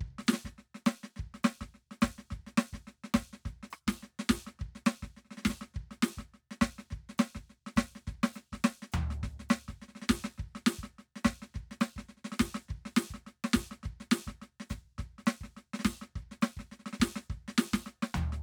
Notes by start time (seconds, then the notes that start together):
0.01 kick
0.08 kick
0.11 kick
0.19 snare
0.27 snare, hi-hat pedal
0.33 snare
0.45 kick, snare
0.58 snare
0.75 snare
0.86 snare, hi-hat pedal
1.04 snare
1.16 kick, snare
1.25 kick
1.34 snare
1.44 snare, hi-hat pedal
1.61 kick, snare
1.75 snare
1.91 snare
2.02 kick, snare, hi-hat pedal
2.10 kick
2.19 snare
2.31 kick, snare
2.38 kick
2.41 kick
2.47 snare
2.58 snare, hi-hat pedal
2.73 kick, snare
2.87 snare
3.04 snare
3.14 kick, snare, hi-hat pedal
3.21 kick
3.33 snare
3.46 kick, snare
3.52 kick
3.63 snare
3.71 cross-stick, hi-hat pedal
3.88 kick, snare
4.03 snare
4.19 snare
4.29 kick, snare, hi-hat pedal
4.36 kick
4.47 snare
4.59 kick, snare
4.75 snare
4.86 snare, hi-hat pedal
5.03 kick, snare
5.17 snare
5.25 snare
5.30 snare
5.31 snare
5.38 snare
5.42 snare, hi-hat pedal
5.45 kick, snare
5.50 snare
5.55 kick
5.61 snare
5.74 kick, snare
5.83 kick
5.91 snare
6.03 snare, hi-hat pedal
6.18 kick, snare
6.34 snare
6.51 snare
6.61 kick, snare, hi-hat pedal
6.71 kick
6.79 snare
6.91 kick, snare
6.99 kick
7.09 snare
7.18 snare, hi-hat pedal
7.35 kick, snare
7.50 snare
7.67 snare
7.77 kick, snare, hi-hat pedal
7.83 kick
7.96 snare
8.07 kick, snare
8.14 kick
8.24 snare
8.33 snare, hi-hat pedal
8.53 kick, snare
8.65 snare
8.82 snare
8.92 kick, floor tom, hi-hat pedal
9.11 snare
9.23 kick, snare
9.30 kick
9.33 kick
9.40 snare
9.49 snare, hi-hat pedal
9.68 kick, snare
9.74 kick
9.82 snare
9.89 snare
9.94 snare
9.95 snare
10.02 snare
10.09 kick, snare, hi-hat pedal
10.17 kick
10.20 kick
10.24 snare
10.38 kick, snare
10.46 kick
10.55 snare
10.67 snare, hi-hat pedal
10.79 kick
10.84 snare
10.99 snare
11.16 snare
11.25 kick, snare, hi-hat pedal
11.42 snare
11.55 kick, snare
11.63 kick
11.71 snare
11.81 snare, hi-hat pedal
11.97 kick, snare
12.09 snare
12.17 snare
12.25 snare
12.32 snare
12.39 kick, snare, hi-hat pedal
12.47 kick
12.55 snare
12.69 kick, snare
12.77 kick
12.86 snare
12.97 snare, hi-hat pedal
13.11 kick, snare
13.27 snare
13.44 snare
13.54 kick, snare, hi-hat pedal
13.62 kick
13.65 kick
13.71 snare
13.83 kick, snare
13.92 kick
14.00 snare
14.11 snare, hi-hat pedal
14.27 kick, snare
14.42 snare
14.60 snare
14.70 kick, snare, hi-hat pedal
14.77 kick
14.98 kick, snare
15.06 kick
15.19 snare
15.26 snare, hi-hat pedal
15.41 kick, snare
15.57 snare
15.74 snare
15.80 snare
15.84 kick, snare, hi-hat pedal
16.02 snare
16.16 kick, snare
16.22 kick
16.32 snare
16.42 snare, hi-hat pedal
16.57 kick, snare
16.72 snare
16.80 snare
16.86 snare
16.93 snare
17.00 kick, snare, hi-hat pedal
17.06 kick
17.16 snare
17.30 kick, snare
17.48 snare
17.58 snare, hi-hat pedal
17.73 kick, snare
17.86 snare
18.03 snare
18.15 kick, floor tom, hi-hat pedal
18.25 kick
18.33 snare